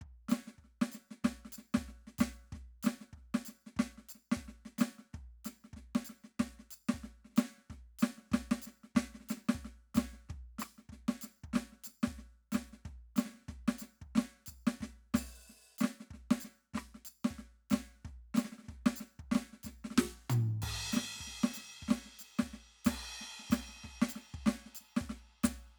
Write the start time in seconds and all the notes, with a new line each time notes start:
0.00 kick
0.29 snare, percussion
0.32 snare
0.47 snare
0.58 kick
0.64 snare
0.82 snare
0.92 snare, percussion
1.11 snare
1.24 kick, snare
1.45 snare
1.53 percussion
1.58 snare
1.74 kick, snare
1.88 snare
2.07 snare
2.19 kick, snare, percussion
2.53 kick, snare
2.83 snare, percussion
2.87 snare
3.01 snare
3.13 kick
3.17 snare
3.35 snare
3.45 snare, percussion
3.67 snare
3.77 kick, snare
3.98 snare
4.09 percussion
4.15 snare
4.32 snare
4.37 kick
4.48 snare
4.66 snare
4.78 snare, percussion
4.81 snare
4.99 snare
5.14 kick, snare
5.45 snare, percussion
5.64 snare
5.73 kick, snare
5.95 snare
6.05 percussion
6.10 snare
6.24 snare
6.40 kick, snare
6.59 snare
6.71 snare, percussion
6.89 snare
6.94 kick
7.04 snare
7.25 snare
7.30 snare
7.33 snare
7.36 snare, percussion
7.38 snare
7.58 snare
7.70 kick, snare
7.99 snare, percussion
8.18 snare
8.23 snare
8.26 snare
8.32 kick, snare
8.51 snare
8.62 percussion
8.67 snare
8.84 snare
8.95 kick, snare
9.15 snare
9.20 snare
9.29 snare, percussion
9.37 snare
9.49 snare
9.55 kick
9.65 snare
9.95 kick, snare, percussion
9.98 snare
10.13 snare
10.29 kick, snare
10.59 cross-stick, snare, percussion
10.78 snare
10.89 kick, snare
11.09 snare
11.22 snare, percussion
11.44 kick
11.53 snare
11.56 snare
11.72 snare
11.84 snare, percussion
12.03 snare
12.07 kick
12.19 snare
12.52 kick, snare, percussion
12.55 snare
12.73 snare
12.85 kick, snare
13.16 snare, percussion
13.18 snare
13.26 snare
13.30 snare
13.34 snare
13.38 snare
13.42 snare
13.49 kick, snare
13.68 snare
13.79 snare, percussion
14.02 kick
14.16 snare
14.18 snare
14.47 kick, percussion
14.51 snare
14.67 snare
14.81 kick, snare
15.14 kick, snare, percussion
15.49 snare
15.79 snare, percussion
15.84 snare
16.00 snare
16.11 kick, snare
16.31 snare
16.40 percussion
16.45 snare
16.74 kick, snare
16.78 cross-stick
16.95 snare
17.05 snare, percussion
17.25 snare
17.31 kick
17.39 snare
17.70 kick, snare, percussion
17.73 snare
18.05 kick, snare
18.35 snare, percussion
18.38 snare
18.45 snare
18.52 snare
18.59 snare
18.64 snare
18.69 kick, snare
18.86 snare
18.96 percussion
19.01 snare
19.19 kick
19.32 snare
19.35 snare
19.53 snare
19.64 kick, snare, percussion
19.85 snare
19.91 snare
19.96 kick, snare
19.98 snare
20.30 floor tom, percussion
20.62 kick, ride
20.93 snare, percussion
20.97 snare
21.16 snare
21.21 kick
21.27 snare
21.44 snare
21.54 snare, percussion
21.83 kick
21.88 snare
21.91 snare
22.06 snare
22.19 snare, percussion
22.39 kick, snare
22.53 snare
22.85 kick, snare, percussion, ride
23.21 snare
23.39 snare
23.44 snare
23.48 kick, snare
23.51 snare, percussion
23.52 snare
23.69 snare
23.76 snare
23.84 kick, snare
24.02 snare
24.09 percussion
24.16 snare
24.34 kick
24.47 snare
24.66 snare
24.75 percussion
24.81 snare
24.97 snare
25.01 kick
25.10 snare
25.44 kick, snare, percussion, floor tom